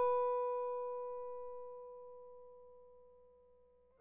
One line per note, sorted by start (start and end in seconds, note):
0.00 3.57 B4